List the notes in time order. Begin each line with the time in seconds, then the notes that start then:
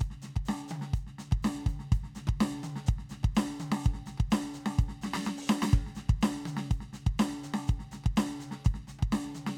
0.01 kick, hi-hat pedal, high tom
0.11 snare
0.23 snare, hi-hat pedal, high tom
0.36 kick, high tom
0.46 snare, hi-hat pedal
0.59 high tom
0.69 hi-hat pedal, high tom
0.82 snare
0.94 kick, hi-hat pedal, high tom
1.07 snare
1.19 snare, hi-hat pedal, high tom
1.32 kick, high tom
1.43 snare, hi-hat pedal
1.56 high tom
1.67 kick, hi-hat pedal, high tom
1.80 snare
1.93 kick, hi-hat pedal, high tom
2.04 snare
2.16 snare, hi-hat pedal, high tom
2.28 kick, high tom
2.41 snare, hi-hat pedal
2.52 high tom
2.64 hi-hat pedal, high tom
2.76 snare
2.87 kick, hi-hat pedal, high tom
2.99 snare
3.10 snare, hi-hat pedal, high tom
3.24 kick, high tom
3.36 snare, hi-hat pedal
3.48 high tom
3.60 hi-hat pedal, high tom
3.73 snare
3.84 kick, hi-hat pedal, high tom
3.94 snare
4.07 snare, hi-hat pedal, high tom
4.18 kick, high tom
4.31 snare, hi-hat pedal
4.43 high tom
4.54 hi-hat pedal, high tom
4.67 snare
4.79 kick, hi-hat pedal, high tom
4.89 snare
5.02 snare, hi-hat pedal
5.14 snare
5.25 snare, hi-hat pedal
5.38 open hi-hat
5.48 snare, hi-hat pedal
5.63 snare
5.72 kick, hi-hat pedal
5.76 high tom
5.87 snare
5.96 snare, hi-hat pedal, high tom
6.09 kick, high tom
6.22 snare, hi-hat pedal
6.34 high tom
6.46 hi-hat pedal, high tom
6.58 snare
6.71 kick, hi-hat pedal, high tom
6.81 snare
6.94 snare, hi-hat pedal, high tom
7.07 kick, high tom
7.19 snare, hi-hat pedal
7.32 high tom
7.44 hi-hat pedal, high tom
7.54 snare
7.68 kick, hi-hat pedal, high tom
7.80 snare
7.92 snare, hi-hat pedal, high tom
8.04 kick, high tom
8.17 snare, hi-hat pedal
8.28 high tom
8.40 hi-hat pedal, high tom
8.52 snare
8.65 kick, hi-hat pedal, high tom
8.75 snare
8.88 snare, hi-hat pedal, high tom
9.00 kick, high tom
9.12 snare, hi-hat pedal
9.23 high tom
9.35 hi-hat pedal, high tom
9.47 snare